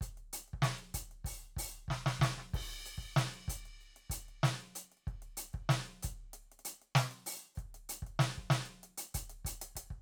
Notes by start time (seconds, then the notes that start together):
0.01 closed hi-hat, kick
0.17 closed hi-hat
0.33 closed hi-hat
0.48 closed hi-hat
0.53 kick
0.62 snare
0.78 closed hi-hat
0.94 closed hi-hat, kick
1.11 closed hi-hat
1.25 open hi-hat, kick
1.46 open hi-hat
1.57 open hi-hat, kick
1.88 kick, snare, hi-hat pedal
2.06 snare
2.20 kick, snare
2.38 snare
2.49 hi-hat pedal
2.54 kick, crash
2.70 closed hi-hat
2.86 closed hi-hat
2.98 kick
3.03 closed hi-hat
3.16 snare
3.34 closed hi-hat
3.48 closed hi-hat, kick
3.66 closed hi-hat
3.80 closed hi-hat
3.96 closed hi-hat
4.10 closed hi-hat, kick
4.28 closed hi-hat
4.43 snare
4.60 closed hi-hat
4.75 closed hi-hat
4.92 closed hi-hat
4.97 closed hi-hat
5.07 kick, closed hi-hat
5.22 closed hi-hat
5.37 closed hi-hat
5.53 kick, closed hi-hat
5.69 snare
5.86 closed hi-hat
6.03 closed hi-hat, kick
6.33 closed hi-hat
6.52 closed hi-hat
6.59 closed hi-hat
6.65 closed hi-hat
6.82 closed hi-hat
6.95 snare
7.11 closed hi-hat
7.26 open hi-hat
7.42 open hi-hat
7.55 kick, closed hi-hat, hi-hat pedal
7.74 closed hi-hat
7.89 closed hi-hat
8.02 kick
8.07 closed hi-hat
8.19 snare
8.35 kick, closed hi-hat
8.50 snare
8.66 closed hi-hat
8.83 closed hi-hat
8.98 closed hi-hat
9.14 closed hi-hat, kick
9.30 closed hi-hat
9.45 closed hi-hat, kick
9.62 closed hi-hat
9.76 kick, closed hi-hat
9.91 kick